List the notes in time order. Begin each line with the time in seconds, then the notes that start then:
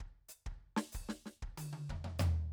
0.00 kick
0.29 hi-hat pedal
0.46 kick
0.77 snare
0.92 kick, hi-hat pedal
1.09 snare
1.26 snare
1.42 kick
1.57 hi-hat pedal, high tom
1.73 high tom
1.89 kick, floor tom
2.04 floor tom
2.19 floor tom, hi-hat pedal